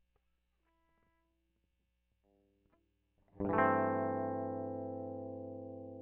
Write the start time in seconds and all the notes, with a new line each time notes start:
3.42 G2
3.50 E3 A3
3.59 C4